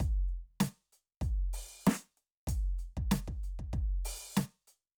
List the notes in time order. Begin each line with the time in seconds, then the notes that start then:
0.00 closed hi-hat, kick
0.29 closed hi-hat
0.61 closed hi-hat, snare
0.93 closed hi-hat
1.22 closed hi-hat, kick
1.54 open hi-hat
1.86 closed hi-hat, snare, hi-hat pedal
2.18 closed hi-hat
2.48 kick, closed hi-hat
2.79 closed hi-hat
2.97 kick
3.12 closed hi-hat, snare
3.28 kick
3.44 closed hi-hat
3.59 kick
3.74 kick, closed hi-hat
4.05 open hi-hat
4.37 closed hi-hat, snare, hi-hat pedal
4.68 closed hi-hat